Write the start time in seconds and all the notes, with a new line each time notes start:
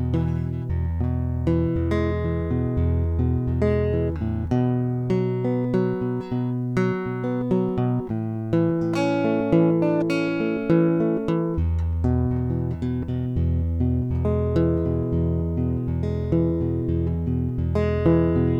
0.00 E2
0.15 E3
0.71 E2
1.02 B2
1.48 E3
1.78 E2
2.26 E3
2.52 B2
2.78 E2
3.20 B2
3.49 E2
3.95 E3
4.18 D3
4.22 A2
4.52 B2
5.11 F#3
5.75 F#3
6.03 B2
6.33 B2
6.92 B2 F#3
7.52 F#3
7.78 B2
8.01 A2
8.09 E3
8.68 E3
8.83 A2
8.94 C#4
9.54 E3
9.83 D4
10.10 C#4
10.71 E3
11.29 E3
11.59 E2
12.05 B2
12.33 E2
12.51 E3
12.83 B2
13.09 B2
13.38 E2
13.82 B2
14.12 E2
14.57 E3
14.87 B2
15.14 E2
15.59 B2
15.89 E2
16.33 E3
16.62 B2
16.90 E2
17.28 B2
17.59 E2
18.07 E3
18.37 B2